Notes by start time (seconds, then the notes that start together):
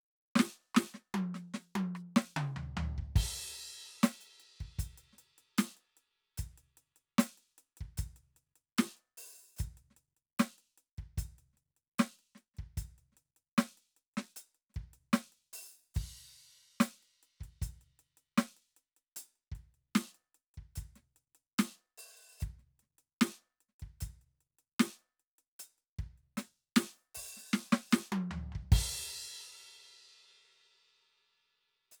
0.36 snare
0.39 snare
0.75 cross-stick, snare
0.94 snare
1.14 high tom
1.34 snare
1.54 snare
1.75 high tom
1.95 cross-stick
2.16 snare
2.36 mid tom
2.56 floor tom
2.77 floor tom
2.98 kick
3.16 kick, crash
4.03 closed hi-hat, snare
4.21 closed hi-hat
4.40 closed hi-hat
4.60 kick, closed hi-hat
4.79 closed hi-hat, kick
4.98 closed hi-hat
5.13 snare
5.18 closed hi-hat
5.38 closed hi-hat
5.58 closed hi-hat, snare
5.77 closed hi-hat
5.97 closed hi-hat
6.38 closed hi-hat, kick
6.58 closed hi-hat
6.77 closed hi-hat
6.96 closed hi-hat
7.18 closed hi-hat, snare
7.38 closed hi-hat
7.58 closed hi-hat
7.77 kick, closed hi-hat
7.98 closed hi-hat, kick
8.16 closed hi-hat
8.36 closed hi-hat
8.56 closed hi-hat
8.78 closed hi-hat, snare
8.97 closed hi-hat
9.17 open hi-hat
9.56 closed hi-hat, kick, hi-hat pedal
9.77 closed hi-hat
9.90 snare
9.96 closed hi-hat
10.17 closed hi-hat
10.39 closed hi-hat, snare
10.58 closed hi-hat
10.78 closed hi-hat
10.98 kick, closed hi-hat
11.18 closed hi-hat, kick
11.38 closed hi-hat
11.53 snare
11.57 closed hi-hat
11.77 closed hi-hat
11.99 closed hi-hat, snare
12.19 closed hi-hat
12.35 snare, closed hi-hat
12.54 snare, closed hi-hat
12.59 kick
12.77 closed hi-hat, kick
12.98 closed hi-hat
13.12 snare
13.17 closed hi-hat
13.36 closed hi-hat
13.58 closed hi-hat, snare
13.77 closed hi-hat
13.97 closed hi-hat
14.14 snare, closed hi-hat
14.36 closed hi-hat
14.55 closed hi-hat
14.70 snare
14.74 kick, closed hi-hat
14.93 closed hi-hat
15.13 closed hi-hat, snare
15.32 closed hi-hat
15.53 open hi-hat
15.94 kick, hi-hat pedal, crash
16.80 closed hi-hat, snare
17.03 closed hi-hat
17.23 closed hi-hat
17.40 kick, snare, closed hi-hat
17.62 closed hi-hat, kick
17.81 closed hi-hat
17.99 closed hi-hat
18.17 closed hi-hat
18.38 closed hi-hat, snare
18.57 closed hi-hat
18.77 closed hi-hat
18.96 closed hi-hat
19.16 closed hi-hat
19.36 closed hi-hat
19.52 kick, closed hi-hat
19.74 closed hi-hat
19.95 closed hi-hat, snare
20.14 closed hi-hat
20.35 closed hi-hat
20.54 kick, closed hi-hat
20.76 closed hi-hat, kick
20.96 snare, closed hi-hat
21.16 closed hi-hat
21.35 closed hi-hat
21.58 closed hi-hat, snare
21.78 closed hi-hat
21.98 open hi-hat
22.40 open hi-hat, kick, hi-hat pedal
22.59 snare, closed hi-hat
22.79 snare, closed hi-hat
22.98 closed hi-hat
23.21 closed hi-hat, snare
23.61 closed hi-hat
23.69 snare
23.80 kick, closed hi-hat
24.01 closed hi-hat, kick
24.21 closed hi-hat
24.41 closed hi-hat
24.59 closed hi-hat
24.80 closed hi-hat, snare
24.99 closed hi-hat
25.20 closed hi-hat
25.38 closed hi-hat
25.59 closed hi-hat
25.78 closed hi-hat
25.99 kick, snare, closed hi-hat
26.18 closed hi-hat
26.37 closed hi-hat, snare
26.76 closed hi-hat, snare
26.93 open hi-hat
27.15 open hi-hat, kick
27.37 snare
27.42 snare
27.53 snare
27.72 snare
27.91 snare, hi-hat pedal
28.12 high tom
28.31 floor tom
28.52 kick, floor tom
28.72 kick, crash
31.91 hi-hat pedal